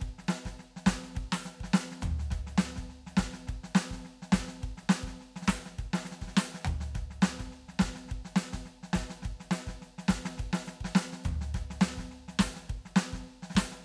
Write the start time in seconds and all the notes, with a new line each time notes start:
0.01 kick, snare
0.09 kick
0.19 snare
0.28 snare, hi-hat pedal
0.46 kick, snare
0.59 snare
0.77 snare
0.87 kick, snare, hi-hat pedal
1.04 snare
1.16 kick, snare
1.24 kick
1.33 snare
1.43 snare, hi-hat pedal
1.61 kick, snare
1.92 snare
2.02 kick, floor tom, hi-hat pedal
2.10 kick
2.13 kick
2.20 snare
2.31 kick, snare
2.39 kick
2.47 snare
2.58 snare, hi-hat pedal
2.77 kick, snare
2.90 snare
3.07 snare
3.18 kick, snare, hi-hat pedal
3.28 kick
3.34 snare
3.48 kick, snare
3.64 snare
3.75 snare, hi-hat pedal
3.91 kick, snare
4.05 snare
4.23 snare
4.33 kick, snare, hi-hat pedal
4.40 kick
4.43 kick
4.49 snare
4.62 kick, snare
4.72 kick
4.78 snare
4.90 snare, hi-hat pedal
5.04 kick
5.08 snare
5.21 snare
5.37 snare
5.43 snare
5.48 kick, snare, hi-hat pedal
5.54 kick
5.66 snare
5.79 kick, snare
5.86 kick
5.94 snare
5.99 cross-stick
6.06 snare, hi-hat pedal
6.12 snare
6.20 snare
6.22 kick, snare
6.28 snare
6.32 snare
6.37 snare
6.55 snare
6.65 kick, hi-hat pedal, floor tom
6.74 kick
6.77 kick
6.81 snare
6.95 kick, snare
7.02 kick
7.06 kick
7.11 snare
7.22 snare, hi-hat pedal
7.40 kick, snare
7.52 snare
7.69 snare
7.80 kick, snare, hi-hat pedal
7.88 kick
7.91 kick
7.96 snare
8.09 kick, snare
8.25 snare
8.37 snare, hi-hat pedal
8.53 kick, snare
8.66 snare
8.84 snare
8.94 kick, snare, hi-hat pedal
9.02 kick
9.10 snare
9.23 kick, snare
9.32 kick
9.41 snare
9.52 snare, hi-hat pedal
9.68 kick, snare
9.82 snare
9.99 snare
10.10 kick, hi-hat pedal
10.19 kick
10.26 snare
10.38 kick, snare
10.46 kick
10.54 snare
10.65 snare, hi-hat pedal
10.81 kick, snare
10.96 snare
11.13 snare
11.24 kick, floor tom, hi-hat pedal
11.35 kick
11.42 snare
11.55 kick, snare
11.61 kick
11.65 kick
11.71 snare
11.81 snare, hi-hat pedal
11.98 kick, snare
12.12 snare
12.29 snare
12.40 kick, snare, hi-hat pedal
12.47 kick
12.57 snare
12.69 kick, snare
12.77 kick
12.86 snare
12.97 snare, hi-hat pedal
13.13 kick, snare
13.28 snare
13.37 snare
13.43 snare
13.51 snare
13.56 kick, snare, hi-hat pedal
13.72 snare